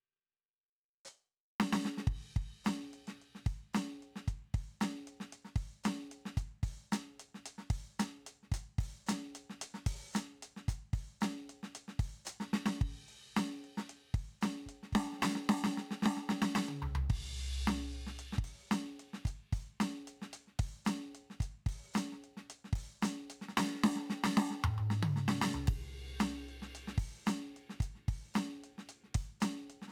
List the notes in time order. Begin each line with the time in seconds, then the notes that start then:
1.05 hi-hat pedal
1.60 snare
1.72 snare
1.85 snare
1.97 snare
2.07 kick, crash
2.36 kick, open hi-hat
2.64 snare, closed hi-hat, hi-hat pedal
2.84 snare
2.93 closed hi-hat
3.07 snare, closed hi-hat
3.21 closed hi-hat
3.35 snare
3.46 kick, open hi-hat
3.73 closed hi-hat, snare, hi-hat pedal
4.02 closed hi-hat
4.16 snare
4.28 kick, closed hi-hat
4.54 kick, open hi-hat
4.81 snare, closed hi-hat, hi-hat pedal
5.07 closed hi-hat
5.20 snare
5.32 closed hi-hat
5.45 snare
5.56 kick, open hi-hat
5.84 snare, closed hi-hat, hi-hat pedal
6.11 closed hi-hat
6.25 snare
6.37 kick, closed hi-hat
6.63 kick, open hi-hat
6.92 snare, closed hi-hat, hi-hat pedal
7.19 closed hi-hat
7.34 snare
7.46 closed hi-hat
7.58 snare
7.70 kick, open hi-hat
7.99 snare, closed hi-hat, hi-hat pedal
8.26 closed hi-hat
8.43 snare
8.52 kick, closed hi-hat
8.78 kick, open hi-hat
9.06 snare, closed hi-hat, hi-hat pedal
9.35 closed hi-hat
9.50 snare
9.61 closed hi-hat
9.74 snare
9.86 kick, open hi-hat
10.13 snare, closed hi-hat, hi-hat pedal
10.42 closed hi-hat
10.56 snare
10.68 kick, closed hi-hat
10.93 kick, open hi-hat
11.21 snare, closed hi-hat, hi-hat pedal
11.49 closed hi-hat
11.63 snare
11.75 closed hi-hat
11.88 snare
11.99 kick, open hi-hat
12.25 closed hi-hat, hi-hat pedal
12.40 snare
12.53 snare
12.66 snare
12.81 kick, crash
13.08 open hi-hat
13.36 snare, closed hi-hat, hi-hat pedal
13.64 closed hi-hat
13.77 snare
13.89 closed hi-hat
14.14 kick, open hi-hat
14.41 snare, closed hi-hat, hi-hat pedal
14.63 kick, snare
14.69 closed hi-hat
14.83 snare
14.88 snare
14.92 kick, snare
15.06 snare
15.12 snare
15.19 snare
15.22 snare
15.35 snare
15.49 snare, hi-hat pedal
15.64 snare
15.77 snare
15.91 snare
16.02 snare
16.06 snare
16.17 snare
16.29 snare
16.42 snare
16.55 snare
16.68 high tom
16.82 floor tom
16.95 floor tom
17.10 kick, ride
17.67 snare, closed hi-hat
17.93 closed hi-hat
18.07 snare
18.19 closed hi-hat
18.32 snare
18.38 kick
18.44 open hi-hat
18.71 snare, closed hi-hat, hi-hat pedal
18.99 closed hi-hat
19.13 snare
19.25 kick, closed hi-hat
19.52 kick, open hi-hat
19.80 snare, closed hi-hat, hi-hat pedal
20.07 closed hi-hat
20.22 snare
20.33 closed hi-hat
20.47 snare
20.59 kick, open hi-hat
20.85 snare, closed hi-hat, hi-hat pedal
21.15 closed hi-hat
21.30 snare
21.40 kick, closed hi-hat
21.66 kick, open hi-hat
21.94 snare, closed hi-hat, hi-hat pedal
22.12 snare
22.24 closed hi-hat
22.37 snare
22.50 closed hi-hat
22.64 snare
22.73 kick, open hi-hat
23.02 closed hi-hat, snare, hi-hat pedal
23.20 snare
23.30 closed hi-hat
23.41 snare
23.48 snare
23.57 snare
23.67 snare
23.74 snare
23.84 snare
23.96 snare
24.10 snare
24.24 snare
24.37 snare
24.50 snare
24.64 mid tom
24.78 mid tom
24.90 snare
25.03 high tom
25.16 snare
25.28 snare
25.42 snare
25.54 floor tom
25.67 kick, ride
26.19 snare, closed hi-hat, hi-hat pedal
26.48 closed hi-hat
26.62 snare
26.75 closed hi-hat
26.87 snare
26.98 kick, open hi-hat
27.26 snare, closed hi-hat, hi-hat pedal
27.56 closed hi-hat
27.69 snare
27.80 kick, closed hi-hat
27.95 snare
28.08 kick, open hi-hat
28.34 snare, closed hi-hat, hi-hat pedal
28.64 closed hi-hat
28.78 snare
28.89 closed hi-hat
29.04 snare
29.14 kick, open hi-hat
29.40 snare, closed hi-hat, hi-hat pedal
29.70 closed hi-hat
29.82 snare
29.88 snare